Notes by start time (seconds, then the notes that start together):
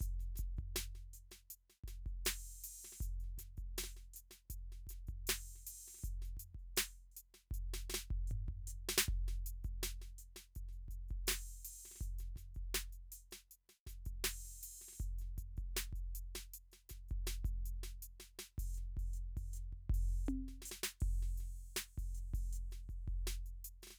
0.01 closed hi-hat, kick, hi-hat pedal
0.20 snare, closed hi-hat
0.36 closed hi-hat, kick, snare
0.57 kick, closed hi-hat
0.76 closed hi-hat, snare
0.95 snare
1.14 closed hi-hat, hi-hat pedal
1.31 snare, closed hi-hat
1.50 closed hi-hat
1.70 snare, closed hi-hat
1.84 closed hi-hat, kick, snare
2.06 kick, closed hi-hat
2.26 open hi-hat, snare
2.64 open hi-hat
2.85 snare
2.93 snare
3.00 closed hi-hat, kick, hi-hat pedal
3.20 snare, closed hi-hat
3.38 closed hi-hat, kick, snare
3.58 kick, closed hi-hat
3.78 open hi-hat, snare
3.84 snare
3.97 snare
4.14 closed hi-hat, hi-hat pedal
4.31 snare, closed hi-hat
4.50 closed hi-hat, kick
4.72 snare
4.87 closed hi-hat, kick, snare
5.08 kick, closed hi-hat
5.27 open hi-hat, snare
5.56 snare
5.67 open hi-hat
5.88 snare
5.95 snare
5.99 snare, hi-hat pedal
6.04 closed hi-hat, kick
6.22 snare, closed hi-hat
6.37 closed hi-hat, kick
6.55 kick
6.60 closed hi-hat
6.77 open hi-hat, snare
7.12 hi-hat pedal
7.17 closed hi-hat
7.34 snare
7.51 closed hi-hat, kick
7.74 snare
7.90 snare, hi-hat pedal
7.94 snare
8.11 kick
8.28 hi-hat pedal, floor tom
8.49 kick
8.68 hi-hat pedal
8.89 snare
8.98 snare
9.09 kick
9.28 snare
9.46 closed hi-hat
9.64 kick, closed hi-hat
9.83 closed hi-hat, snare
10.02 snare
10.19 closed hi-hat, hi-hat pedal
10.36 snare, closed hi-hat
10.56 kick, closed hi-hat
10.69 snare
10.73 closed hi-hat
10.89 kick, closed hi-hat
11.09 kick, closed hi-hat
11.28 open hi-hat, snare
11.32 snare
11.65 open hi-hat
11.85 snare
11.92 snare
11.96 snare
12.01 kick, closed hi-hat, hi-hat pedal
12.19 closed hi-hat, snare
12.36 kick, snare, closed hi-hat
12.55 closed hi-hat, kick
12.75 closed hi-hat, snare
12.93 closed hi-hat
13.12 open hi-hat
13.31 snare, closed hi-hat
13.51 closed hi-hat
13.69 closed hi-hat, snare
13.87 kick, snare, closed hi-hat
14.06 closed hi-hat, kick
14.24 open hi-hat, snare
14.45 snare
14.63 open hi-hat
14.82 snare
14.88 snare
14.93 snare
14.99 kick, closed hi-hat, hi-hat pedal
15.19 closed hi-hat, snare
15.38 kick, closed hi-hat
15.57 kick, closed hi-hat
15.77 closed hi-hat, snare
15.93 kick, closed hi-hat
16.15 closed hi-hat
16.35 closed hi-hat, snare
16.54 closed hi-hat
16.72 snare, closed hi-hat
16.90 kick, snare, closed hi-hat
17.09 kick, closed hi-hat
17.27 snare, closed hi-hat
17.45 kick, closed hi-hat
17.66 closed hi-hat
17.84 snare, closed hi-hat
18.03 closed hi-hat
18.20 snare, closed hi-hat
18.39 snare, closed hi-hat
18.58 open hi-hat, kick
18.75 snare, hi-hat pedal
18.97 open hi-hat, kick
19.14 hi-hat pedal
19.37 open hi-hat, kick
19.54 snare, hi-hat pedal
19.73 kick
19.90 kick
19.94 open hi-hat
20.08 snare
20.12 snare
20.27 hi-hat pedal, high tom
20.48 snare
20.62 snare, hi-hat pedal
20.72 snare
20.84 snare
21.01 kick, crash
21.23 snare
21.38 snare, closed hi-hat
21.56 closed hi-hat
21.77 snare, closed hi-hat
21.98 open hi-hat, kick
22.15 snare, hi-hat pedal
22.34 open hi-hat, kick
22.53 hi-hat pedal
22.72 snare, closed hi-hat
22.90 kick, closed hi-hat
23.08 kick, closed hi-hat
23.27 snare, closed hi-hat
23.46 closed hi-hat
23.65 closed hi-hat
23.83 snare, closed hi-hat
23.87 snare
23.91 snare